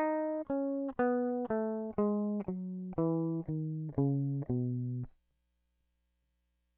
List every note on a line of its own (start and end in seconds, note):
0.00 0.44 D#4
0.50 0.94 C#4
1.00 1.49 B3
1.51 1.94 A3
1.99 2.45 G#3
2.49 2.97 F#3
2.99 3.45 E3
3.50 3.94 D#3
3.99 4.46 C#3
4.52 5.07 B2